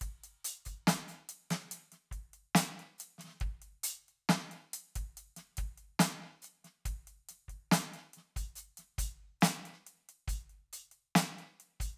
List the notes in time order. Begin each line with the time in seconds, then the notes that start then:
0.01 kick, closed hi-hat
0.24 closed hi-hat
0.44 closed hi-hat
0.65 closed hi-hat, kick
0.87 closed hi-hat, snare
1.08 closed hi-hat
1.29 closed hi-hat
1.50 snare, closed hi-hat
1.71 closed hi-hat
1.92 snare, closed hi-hat
2.11 kick, closed hi-hat
2.33 closed hi-hat
2.55 open hi-hat, snare
2.79 open hi-hat
2.98 closed hi-hat, hi-hat pedal
3.18 snare, closed hi-hat
3.24 snare
3.27 snare
3.35 snare
3.40 kick, snare, closed hi-hat
3.62 closed hi-hat
3.83 closed hi-hat
4.08 closed hi-hat
4.29 snare, closed hi-hat
4.37 snare
4.51 closed hi-hat
4.73 closed hi-hat
4.96 kick, closed hi-hat
5.17 closed hi-hat
5.36 snare, closed hi-hat
5.57 kick, closed hi-hat
5.78 closed hi-hat
5.99 closed hi-hat, snare
6.42 closed hi-hat, hi-hat pedal
6.64 snare, closed hi-hat
6.85 kick, closed hi-hat
7.07 closed hi-hat
7.29 snare, closed hi-hat
7.48 kick, closed hi-hat
7.72 closed hi-hat, snare
7.94 snare, closed hi-hat
8.13 snare, closed hi-hat
8.36 open hi-hat, kick
8.56 closed hi-hat, hi-hat pedal
8.77 snare, closed hi-hat
8.98 open hi-hat, kick
9.41 closed hi-hat, snare, hi-hat pedal
9.65 closed hi-hat
9.72 snare
9.87 closed hi-hat
10.09 closed hi-hat
10.28 closed hi-hat, kick
10.50 closed hi-hat
10.73 closed hi-hat
10.91 closed hi-hat
11.15 closed hi-hat, snare
11.22 snare
11.38 closed hi-hat
11.60 closed hi-hat
11.80 open hi-hat, kick